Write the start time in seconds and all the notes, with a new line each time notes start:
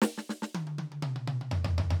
0.04 snare
0.17 snare
0.29 snare
0.42 snare
0.54 high tom
0.67 high tom
0.78 high tom
0.92 high tom
1.02 mid tom
1.16 mid tom
1.27 mid tom
1.41 mid tom
1.51 floor tom
1.64 floor tom
1.78 floor tom
1.90 floor tom